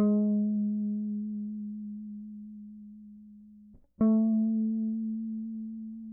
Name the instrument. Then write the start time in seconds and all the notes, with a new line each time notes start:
electric guitar
0.00 G#3
4.01 A3